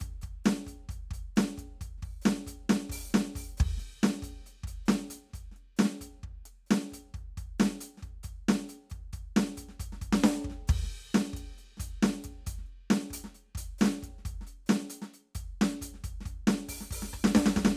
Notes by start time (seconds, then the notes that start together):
0.01 closed hi-hat, kick
0.22 closed hi-hat, kick
0.45 snare, hi-hat pedal
0.67 closed hi-hat, kick
0.90 closed hi-hat, kick
1.11 closed hi-hat, kick
1.37 snare, hi-hat pedal
1.58 kick, closed hi-hat
1.82 closed hi-hat, kick
1.98 snare
2.03 open hi-hat, kick
2.22 snare, hi-hat pedal
2.47 closed hi-hat, kick
2.70 snare
2.90 open hi-hat, kick
3.10 hi-hat pedal
3.15 snare
3.36 open hi-hat, kick
3.58 kick, hi-hat pedal, crash
3.78 closed hi-hat, snare
4.04 snare
4.23 closed hi-hat, kick
4.47 closed hi-hat
4.64 closed hi-hat, kick, snare
4.86 snare, hi-hat pedal
5.09 closed hi-hat, kick
5.30 snare
5.34 closed hi-hat, kick
5.52 snare
5.57 closed hi-hat
5.77 snare, hi-hat pedal
5.85 snare
6.01 closed hi-hat, kick
6.24 kick, closed hi-hat
6.46 closed hi-hat
6.67 hi-hat pedal
6.71 snare
6.93 closed hi-hat, kick
7.15 closed hi-hat, kick
7.38 closed hi-hat, kick
7.59 snare, hi-hat pedal
7.66 snare
7.81 closed hi-hat
7.98 snare
8.03 closed hi-hat, kick
8.24 closed hi-hat, kick
8.49 snare
8.70 closed hi-hat
8.90 closed hi-hat, kick
9.14 closed hi-hat, kick
9.37 snare
9.58 closed hi-hat, kick
9.69 snare
9.80 closed hi-hat, kick
9.93 snare
10.02 closed hi-hat, kick
10.13 snare
10.24 snare, hi-hat pedal
10.45 kick
10.50 snare
10.68 kick, hi-hat pedal, crash
10.84 snare
10.89 closed hi-hat
11.15 snare
11.34 kick, closed hi-hat
11.59 closed hi-hat
11.78 closed hi-hat, kick, snare
12.03 snare
12.25 kick, closed hi-hat
12.47 closed hi-hat, kick
12.59 snare
12.64 snare, closed hi-hat
12.91 snare
13.11 closed hi-hat, kick
13.25 snare
13.35 closed hi-hat
13.56 closed hi-hat, kick
13.79 snare, hi-hat pedal
13.86 snare
14.03 kick, closed hi-hat
14.19 snare
14.26 closed hi-hat, kick
14.42 snare
14.47 closed hi-hat
14.67 snare, hi-hat pedal
14.90 closed hi-hat
15.02 snare
15.14 closed hi-hat
15.36 closed hi-hat, kick
15.62 snare
15.82 closed hi-hat, kick
15.95 snare
16.01 closed hi-hat, kick, snare
16.21 snare
16.26 open hi-hat, kick
16.48 snare
16.69 open hi-hat, kick
16.81 snare
16.91 open hi-hat, kick
17.03 snare
17.14 kick, cross-stick
17.25 snare
17.36 kick, snare
17.46 snare
17.57 kick, snare
17.65 snare